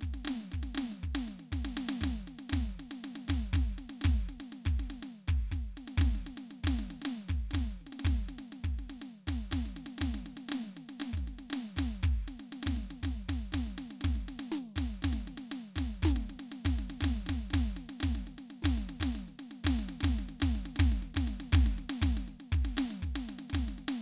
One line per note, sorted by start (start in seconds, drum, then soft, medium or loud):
0.01 kick soft
0.01 snare soft
0.14 snare soft
0.25 snare medium
0.28 snare medium
0.41 snare soft
0.52 kick soft
0.52 snare soft
0.63 snare soft
0.75 snare medium
0.78 snare medium
0.92 snare soft
1.03 kick soft
1.03 snare soft
1.15 snare medium
1.28 snare soft
1.39 snare soft
1.52 kick soft
1.52 snare medium
1.65 snare medium
1.77 snare medium
1.89 snare medium
2.01 kick soft
2.01 snare soft
2.04 snare medium
2.27 snare soft
2.39 snare soft
2.50 kick medium
2.50 snare medium
2.53 snare medium
2.80 snare soft
2.91 snare medium
3.04 snare medium
3.16 snare soft
3.28 kick medium
3.28 snare soft
3.30 snare medium
3.53 kick medium
3.53 snare soft
3.53 snare medium
3.78 snare soft
3.90 snare soft
4.01 snare medium
4.04 kick medium
4.04 snare medium
4.29 snare soft
4.40 snare soft
4.52 snare soft
4.65 kick medium
4.65 snare soft
4.80 snare soft
4.90 snare soft
5.03 snare medium
5.28 kick medium
5.28 snare soft
5.52 kick soft
5.52 snare soft
5.77 snare soft
5.88 snare soft
5.98 kick medium
5.98 snare medium
6.01 snare medium
6.15 snare soft
6.27 snare soft
6.37 snare soft
6.51 snare soft
6.64 kick medium
6.64 snare soft
6.67 snare medium
6.79 snare soft
6.90 snare soft
7.02 snare soft
7.05 snare medium
7.29 kick medium
7.29 snare soft
7.51 kick medium
7.51 snare soft
7.55 snare medium
7.81 snare soft
7.87 snare soft
7.92 snare soft
7.99 snare medium
8.05 kick medium
8.05 snare medium
8.29 snare soft
8.39 snare soft
8.52 snare soft
8.64 kick medium
8.64 snare soft
8.79 snare soft
8.90 snare soft
9.02 snare soft
9.27 kick soft
9.27 snare soft
9.27 snare medium
9.52 kick soft
9.52 snare soft
9.52 snare medium
9.66 snare soft
9.77 snare soft
9.86 snare soft
9.98 kick soft
9.98 snare medium
10.02 snare medium
10.14 snare soft
10.26 snare soft
10.37 snare soft
10.49 snare medium
10.52 snare medium
10.64 snare soft
10.77 snare soft
10.89 snare soft
11.00 snare medium
11.02 snare medium
11.13 kick soft
11.17 snare soft
11.39 snare soft
11.50 snare soft
11.53 snare medium
11.77 kick soft
11.77 snare soft
11.79 snare medium
12.03 kick medium
12.03 snare soft
12.28 snare soft
12.40 snare soft
12.52 snare soft
12.63 kick soft
12.63 snare medium
12.67 snare medium
12.76 snare soft
12.91 snare soft
13.03 kick soft
13.03 snare medium
13.29 kick soft
13.29 snare medium
13.52 kick soft
13.52 snare soft
13.54 snare medium
13.67 snare soft
13.78 snare medium
13.91 snare soft
14.01 kick medium
14.01 snare soft
14.04 snare medium
14.16 snare soft
14.28 snare soft
14.39 snare medium
14.52 snare medium
14.76 kick soft
14.76 snare soft
14.78 snare medium
15.02 kick medium
15.02 snare soft
15.04 snare medium
15.13 snare soft
15.28 snare soft
15.52 snare medium
15.76 kick soft
15.76 snare soft
15.78 snare medium
16.02 kick medium
16.02 snare soft
16.05 snare medium
16.16 snare soft
16.30 snare soft
16.39 snare soft
16.52 snare soft
16.65 kick medium
16.65 snare soft
16.65 snare medium
16.79 snare soft
16.90 snare soft
17.01 kick medium
17.01 snare medium
17.04 snare medium
17.27 kick soft
17.27 snare soft
17.29 snare medium
17.51 kick medium
17.51 snare soft
17.54 snare medium
17.77 snare soft
17.89 snare soft
18.00 snare medium
18.03 kick medium
18.03 snare medium
18.15 snare soft
18.27 snare soft
18.38 snare soft
18.50 snare soft
18.62 kick medium
18.62 snare soft
18.66 snare loud
18.78 snare soft
18.89 snare soft
19.00 kick soft
19.00 snare medium
19.03 snare medium
19.15 snare soft
19.28 snare soft
19.39 snare soft
19.51 snare soft
19.64 kick medium
19.64 snare soft
19.67 snare loud
19.79 snare soft
19.89 snare soft
20.01 kick medium
20.01 snare medium
20.04 snare medium
20.19 snare soft
20.29 snare soft
20.40 snare soft
20.42 kick medium
20.42 snare medium
20.55 snare soft
20.66 snare soft
20.76 kick medium
20.76 snare medium
20.80 snare medium
20.92 snare soft
21.02 snare soft
21.14 kick medium
21.14 snare soft
21.17 snare medium
21.27 snare soft
21.40 snare soft
21.52 kick medium
21.52 snare medium
21.55 snare medium
21.66 snare soft
21.78 snare soft
21.90 snare medium
22.02 kick medium
22.02 snare medium
22.17 snare soft
22.28 snare soft
22.40 snare soft
22.52 kick medium
22.52 snare soft
22.65 snare medium
22.77 snare medium
22.77 snare loud
22.91 snare soft
23.02 kick soft
23.02 snare soft
23.16 snare medium
23.29 snare soft
23.50 kick medium
23.50 snare soft
23.55 snare medium
23.68 snare soft